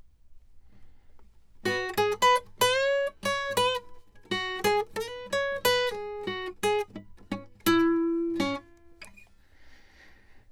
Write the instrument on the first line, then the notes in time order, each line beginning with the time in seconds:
acoustic guitar
1.66 B3 F#4
1.98 G#4
2.22 B4
2.62 B4
2.76 C#5
3.26 C#5
3.57 B4
3.76 B4
4.32 F#4
4.65 G#4
4.96 B4
5.33 C#5
5.65 B4
5.88 G#4
6.28 F#4
6.63 G#4
7.32 C#4
7.67 E4
8.40 C#4